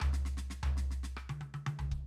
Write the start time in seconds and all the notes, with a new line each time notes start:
0.00 cross-stick, floor tom
0.13 snare
0.25 snare
0.37 snare
0.50 snare
0.63 floor tom
0.77 snare
0.91 snare
1.03 snare
1.17 cross-stick
1.29 closed hi-hat, high tom
1.41 high tom
1.54 high tom
1.66 high tom
1.79 floor tom
1.91 kick